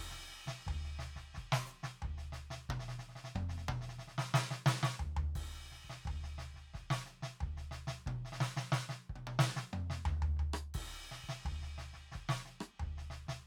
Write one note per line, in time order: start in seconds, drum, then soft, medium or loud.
0.11 snare soft
0.26 snare soft
0.26 hi-hat pedal soft
0.47 kick soft
0.47 snare medium
0.67 kick soft
0.67 floor tom loud
0.85 snare soft
0.99 snare medium
0.99 hi-hat pedal soft
1.16 kick soft
1.16 snare soft
1.35 kick soft
1.35 snare soft
1.53 snare loud
1.66 snare soft
1.66 hi-hat pedal medium
1.84 kick soft
1.84 snare medium
2.03 kick soft
2.03 floor tom medium
2.18 snare soft
2.33 snare medium
2.33 hi-hat pedal soft
2.51 snare medium
2.70 kick medium
2.70 high tom loud
2.80 kick soft
2.80 snare soft
2.89 snare soft
2.99 snare soft
3.16 snare soft
3.25 snare soft
3.36 kick soft
3.36 mid tom loud
3.45 kick soft
3.49 snare soft
3.58 snare soft
3.69 kick soft
3.69 high tom loud
3.82 snare soft
3.89 snare soft
3.99 snare soft
4.08 snare soft
4.19 snare medium
4.35 snare loud
4.51 snare medium
4.67 snare loud
4.83 snare loud
5.00 floor tom loud
5.05 kick soft
5.17 floor tom loud
5.36 kick medium
5.36 crash medium
5.43 crash soft
5.72 snare soft
5.85 kick soft
5.90 snare medium
6.06 kick soft
6.06 floor tom medium
6.24 snare soft
6.39 snare medium
6.39 hi-hat pedal soft
6.55 kick soft
6.55 snare soft
6.74 kick soft
6.74 snare soft
6.91 snare loud
7.06 snare soft
7.06 hi-hat pedal soft
7.21 kick soft
7.21 snare medium
7.41 kick soft
7.41 floor tom medium
7.57 snare soft
7.72 snare medium
7.72 hi-hat pedal soft
7.88 snare medium
8.07 kick medium
8.07 high tom loud
8.16 kick soft
8.25 snare soft
8.33 snare medium
8.41 snare loud
8.57 snare medium
8.73 snare loud
8.90 snare medium
9.10 kick soft
9.16 kick soft
9.16 high tom medium
9.28 high tom medium
9.40 snare loud
9.57 snare medium
9.74 mid tom loud
9.90 snare medium
10.06 floor tom loud
10.23 floor tom medium
10.37 kick soft
10.37 floor tom medium
10.54 cross-stick medium
10.75 kick medium
10.75 crash medium
10.87 kick soft
10.87 snare soft
11.10 snare soft
11.10 hi-hat pedal soft
11.24 kick soft
11.29 snare medium
11.46 kick soft
11.46 floor tom medium
11.63 snare soft
11.79 snare soft
11.79 hi-hat pedal soft
11.94 kick soft
11.94 snare soft
12.12 kick soft
12.12 snare soft
12.29 snare loud
12.46 snare soft
12.46 hi-hat pedal soft
12.61 kick soft
12.61 cross-stick medium
12.80 kick soft
12.80 floor tom medium
12.98 snare soft
13.11 snare soft
13.16 hi-hat pedal soft
13.27 kick soft
13.27 snare medium